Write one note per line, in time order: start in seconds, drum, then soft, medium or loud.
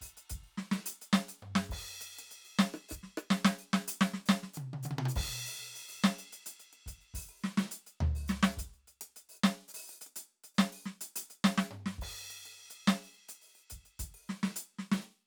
0.01 open hi-hat medium
0.01 kick soft
0.17 closed hi-hat medium
0.30 closed hi-hat medium
0.30 kick soft
0.36 kick soft
0.44 open hi-hat soft
0.58 snare medium
0.71 snare loud
0.71 hi-hat pedal soft
0.86 closed hi-hat loud
1.01 closed hi-hat soft
1.01 closed hi-hat medium
1.13 snare loud
1.28 open hi-hat medium
1.39 hi-hat pedal soft
1.39 mid tom medium
1.55 snare loud
1.64 hi-hat pedal soft
1.69 kick soft
1.69 crash medium
1.75 kick soft
1.87 closed hi-hat soft
2.01 closed hi-hat medium
2.19 closed hi-hat medium
2.31 closed hi-hat medium
2.45 open hi-hat soft
2.59 snare loud
2.74 cross-stick medium
2.77 cross-stick soft
2.89 open hi-hat medium
2.89 kick soft
2.89 cross-stick medium
2.89 hi-hat pedal medium
3.03 snare soft
3.17 cross-stick medium
3.31 snare loud
3.35 hi-hat pedal soft
3.45 snare loud
3.59 open hi-hat medium
3.73 snare loud
3.88 closed hi-hat loud
4.01 snare loud
4.14 snare medium
4.26 snare loud
4.26 hi-hat pedal medium
4.43 snare medium
4.54 hi-hat pedal medium
4.54 high tom medium
4.73 high tom medium
4.83 hi-hat pedal medium
4.83 high tom medium
4.91 high tom medium
4.99 high tom loud
5.06 hi-hat pedal medium
5.06 high tom medium
5.16 kick medium
5.16 crash loud
5.46 open hi-hat medium
5.63 open hi-hat soft
5.75 open hi-hat medium
5.89 open hi-hat medium
6.04 snare loud
6.19 closed hi-hat medium
6.33 closed hi-hat medium
6.46 closed hi-hat medium
6.60 closed hi-hat soft
6.73 closed hi-hat soft
6.86 closed hi-hat medium
6.86 kick soft
7.01 open hi-hat soft
7.14 open hi-hat medium
7.14 kick soft
7.29 open hi-hat soft
7.42 snare medium
7.42 hi-hat pedal soft
7.58 snare loud
7.71 closed hi-hat medium
7.87 closed hi-hat soft
8.01 floor tom loud
8.15 open hi-hat medium
8.28 snare loud
8.28 hi-hat pedal medium
8.43 snare loud
8.51 hi-hat pedal soft
8.57 closed hi-hat medium
8.57 kick soft
8.63 kick soft
8.73 closed hi-hat soft
8.87 closed hi-hat soft
9.01 closed hi-hat loud
9.16 closed hi-hat medium
9.29 open hi-hat medium
9.36 hi-hat pedal soft
9.44 snare loud
9.68 hi-hat pedal medium
9.74 open hi-hat loud
9.89 open hi-hat medium
10.01 closed hi-hat medium
10.07 closed hi-hat soft
10.16 closed hi-hat loud
10.44 closed hi-hat medium
10.54 hi-hat pedal soft
10.58 snare loud
10.72 open hi-hat medium
10.86 snare medium
11.01 open hi-hat loud
11.16 closed hi-hat loud
11.30 closed hi-hat soft
11.44 snare loud
11.58 snare loud
11.58 hi-hat pedal medium
11.71 mid tom medium
11.86 snare medium
11.93 hi-hat pedal soft
11.98 kick soft
11.98 crash medium
12.04 kick soft
12.18 closed hi-hat soft
12.30 closed hi-hat medium
12.46 closed hi-hat medium
12.58 closed hi-hat soft
12.70 closed hi-hat medium
12.88 snare loud
13.03 open hi-hat soft
13.14 closed hi-hat soft
13.29 open hi-hat medium
13.42 open hi-hat soft
13.55 open hi-hat soft
13.70 closed hi-hat medium
13.70 kick soft
13.85 closed hi-hat soft
13.99 open hi-hat medium
13.99 kick soft
14.14 open hi-hat medium
14.29 snare medium
14.43 snare loud
14.56 closed hi-hat loud
14.79 snare medium
14.92 snare loud
15.01 hi-hat pedal soft